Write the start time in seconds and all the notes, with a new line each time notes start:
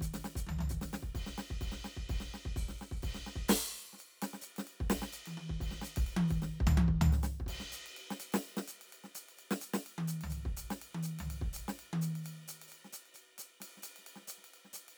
0.01 kick, hi-hat pedal
0.14 snare, ride
0.25 snare, ride
0.36 kick, hi-hat pedal
0.47 floor tom, high tom
0.59 floor tom, high tom
0.69 kick, hi-hat pedal
0.82 snare, ride
0.93 snare, ride
1.03 kick
1.15 kick, ride
1.26 snare
1.38 snare
1.50 kick
1.61 kick, ride
1.72 snare
1.84 snare
1.97 kick
2.09 kick, ride
2.20 snare
2.34 snare
2.45 kick
2.56 open hi-hat, kick
2.69 snare
2.81 snare
2.92 kick
3.03 kick, ride
3.15 snare
3.27 snare
3.36 kick
3.49 snare, crash
3.93 snare
3.98 hi-hat pedal, ride
4.22 snare, ride
4.33 snare
4.42 hi-hat pedal, ride
4.56 snare, ride
4.67 ride
4.80 kick
4.90 snare, ride
5.02 snare
5.13 hi-hat pedal, ride
5.26 high tom, ride
5.37 high tom
5.50 kick
5.61 kick, ride
5.71 snare
5.82 snare, hi-hat pedal
5.96 kick, ride
6.07 ride
6.17 high tom
6.28 kick, hi-hat pedal, ride
6.42 snare
6.60 kick
6.67 floor tom
6.78 high tom
6.88 kick
7.01 floor tom
7.13 snare
7.23 snare, hi-hat pedal
7.40 kick
7.46 kick, ride
7.60 snare
7.72 hi-hat pedal, ride
7.86 ride
7.97 ride
8.11 snare
8.20 hi-hat pedal, ride
8.33 snare, ride
8.43 ride
8.57 snare
8.68 hi-hat pedal, ride
8.81 ride
8.88 hi-hat pedal
8.93 ride
9.04 snare
9.15 hi-hat pedal, ride
9.29 ride
9.37 hi-hat pedal
9.51 snare
9.61 hi-hat pedal, ride
9.74 snare, ride
9.86 ride
9.98 high tom
10.08 hi-hat pedal, ride
10.21 floor tom, ride
10.30 hi-hat pedal, ride
10.45 kick
10.57 hi-hat pedal, ride
10.71 snare, ride
10.82 ride
10.95 high tom
11.03 hi-hat pedal, ride
11.19 floor tom, ride
11.30 ride
11.42 kick
11.53 hi-hat pedal, ride
11.68 snare, ride
11.79 ride
11.93 high tom
12.01 hi-hat pedal, ride
12.16 ride
12.24 hi-hat pedal, ride
12.48 hi-hat pedal, ride
12.62 ride
12.68 hi-hat pedal
12.72 ride
12.85 snare
12.93 hi-hat pedal, ride
13.06 ride
13.14 hi-hat pedal, ride
13.38 hi-hat pedal, ride
13.60 snare, ride
13.77 snare
13.83 hi-hat pedal, ride
13.96 snare, ride
14.07 ride
14.16 snare
14.22 snare
14.28 hi-hat pedal, ride
14.38 snare
14.44 ride
14.54 ride
14.65 snare
14.73 snare, hi-hat pedal, ride
14.88 ride
14.94 hi-hat pedal